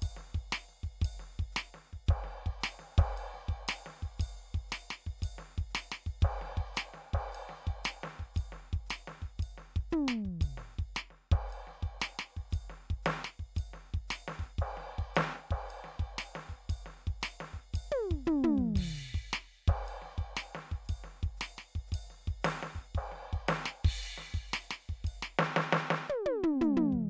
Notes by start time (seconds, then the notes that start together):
0.01 kick, hi-hat pedal, ride
0.17 snare
0.35 kick
0.50 snare, hi-hat pedal, ride
0.69 snare
0.84 kick
1.01 kick, hi-hat pedal
1.05 ride
1.20 snare
1.40 kick
1.52 hi-hat pedal
1.57 snare, ride
1.75 snare
1.93 kick
2.07 kick, hi-hat pedal, crash
2.24 snare
2.47 kick
2.61 snare, hi-hat pedal, ride
2.80 snare
2.98 kick, crash
3.17 hi-hat pedal, ride
3.34 snare
3.49 kick
3.68 snare, hi-hat pedal, ride
3.87 snare
4.03 kick
4.18 kick, hi-hat pedal, ride
4.55 kick
4.69 snare, hi-hat pedal, ride
4.91 snare
5.07 kick
5.19 kick, hi-hat pedal
5.24 ride
5.39 snare
5.58 kick
5.70 hi-hat pedal
5.75 snare, ride
5.92 snare
6.07 kick
6.21 kick, hi-hat pedal, crash
6.42 snare
6.58 kick
6.74 snare, hi-hat pedal, ride
6.94 snare
7.14 kick, crash
7.32 hi-hat pedal, ride
7.50 snare
7.67 kick
7.84 snare, hi-hat pedal, ride
8.04 snare
8.20 kick
8.34 kick, hi-hat pedal, ride
8.53 snare
8.73 kick
8.86 hi-hat pedal, ride
8.91 snare
9.08 snare
9.22 kick
9.38 kick, hi-hat pedal
9.43 ride
9.58 snare
9.77 kick
9.91 floor tom, hi-hat pedal
10.08 snare
10.25 kick
10.41 kick, hi-hat pedal, ride
10.58 snare
10.79 kick
10.95 snare, hi-hat pedal
11.11 snare
11.32 kick, crash
11.49 hi-hat pedal
11.53 ride
11.67 snare
11.83 kick
12.00 snare, hi-hat pedal, ride
12.19 snare
12.37 kick
12.51 kick, hi-hat pedal, ride
12.70 snare
12.91 kick
13.03 snare, hi-hat pedal, ride
13.25 snare
13.40 kick
13.55 kick, hi-hat pedal, ride
13.74 snare
13.94 kick
14.08 snare, hi-hat pedal
14.12 ride
14.28 snare
14.40 kick
14.59 kick, hi-hat pedal, crash
14.78 snare
14.99 kick
15.14 snare, hi-hat pedal, ride
15.36 snare
15.51 kick, crash
15.68 hi-hat pedal, ride
15.85 snare
16.00 kick
16.19 snare, hi-hat pedal, ride
16.36 snare
16.49 kick
16.69 kick, hi-hat pedal, ride
16.86 snare
17.07 kick
17.21 snare, hi-hat pedal, ride
17.41 snare
17.54 kick
17.73 kick, hi-hat pedal, ride
17.92 high tom
18.11 kick
18.26 floor tom, hi-hat pedal
18.44 floor tom
18.58 kick
18.76 kick, hi-hat pedal, ride, crash
19.15 kick
19.30 snare, hi-hat pedal
19.68 kick, crash
19.85 hi-hat pedal, ride
20.02 snare
20.18 kick
20.36 snare, hi-hat pedal, ride
20.55 snare
20.72 kick
20.85 hi-hat pedal
20.89 kick, ride
21.04 snare
21.23 kick
21.37 hi-hat pedal
21.41 snare, ride
21.59 snare
21.76 kick
21.88 hi-hat pedal
21.92 kick, ride
22.11 snare
22.28 kick
22.42 snare, hi-hat pedal, ride
22.63 snare
22.75 kick
22.94 kick, hi-hat pedal, crash
23.12 snare
23.33 kick
23.48 snare, hi-hat pedal, ride
23.66 snare
23.84 kick, crash
24.03 hi-hat pedal, ride
24.18 snare
24.34 kick
24.54 snare, hi-hat pedal, ride
24.71 snare
24.89 kick
25.04 kick, hi-hat pedal, ride
25.23 snare
25.39 snare
25.57 snare, hi-hat pedal
25.73 snare
25.91 snare
26.07 hi-hat pedal, high tom
26.26 high tom
26.43 floor tom
26.61 floor tom, hi-hat pedal
26.77 floor tom
26.93 kick